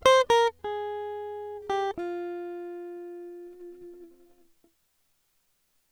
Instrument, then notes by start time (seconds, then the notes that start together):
acoustic guitar
0.07 C5
0.31 A#4
0.66 G#4
1.71 G4
2.00 F4